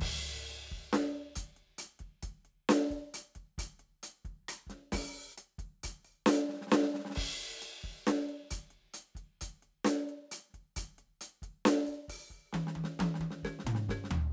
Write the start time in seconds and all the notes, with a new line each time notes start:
0.01 kick, ride
0.49 closed hi-hat
0.71 kick, closed hi-hat
0.93 snare, closed hi-hat
1.15 closed hi-hat
1.36 closed hi-hat, kick
1.57 closed hi-hat
1.78 closed hi-hat
1.99 kick, closed hi-hat
2.23 kick, closed hi-hat
2.45 closed hi-hat
2.69 closed hi-hat, snare
2.90 kick, closed hi-hat
3.14 closed hi-hat
3.35 kick, closed hi-hat
3.58 closed hi-hat, kick
3.79 closed hi-hat
4.03 closed hi-hat
4.25 kick, closed hi-hat
4.43 kick
4.49 closed hi-hat, cross-stick
4.67 kick, snare, closed hi-hat
4.92 open hi-hat, kick, snare
5.33 hi-hat pedal
5.38 closed hi-hat
5.59 kick, closed hi-hat
5.83 closed hi-hat, kick
6.05 open hi-hat
6.26 open hi-hat, snare
6.49 snare
6.53 snare
6.56 snare
6.61 snare
6.67 snare, hi-hat pedal
6.72 snare
6.83 snare
6.94 snare
6.99 snare
7.05 snare
7.10 snare
7.15 kick, snare, ride
7.62 closed hi-hat
7.84 kick, closed hi-hat
8.07 snare, closed hi-hat
8.29 closed hi-hat
8.43 snare
8.51 closed hi-hat, kick
8.71 closed hi-hat
8.86 snare
8.94 closed hi-hat
9.15 kick, closed hi-hat
9.41 closed hi-hat, kick
9.62 closed hi-hat
9.85 closed hi-hat, snare
10.09 closed hi-hat
10.32 closed hi-hat
10.50 snare
10.54 kick, closed hi-hat
10.76 closed hi-hat, kick
10.98 closed hi-hat
11.21 closed hi-hat
11.42 kick, closed hi-hat
11.65 closed hi-hat, snare
11.87 kick, open hi-hat
12.08 kick, open hi-hat
12.30 kick, open hi-hat
12.53 kick, snare, high tom
12.67 snare
12.75 kick, high tom
12.84 snare
12.99 kick, snare, hi-hat pedal, high tom
13.14 snare
13.20 kick, high tom
13.31 snare
13.43 kick, snare, hi-hat pedal, percussion
13.59 snare
13.65 kick, mid tom
13.75 snare
13.89 kick, snare, percussion
14.04 snare
14.10 kick, floor tom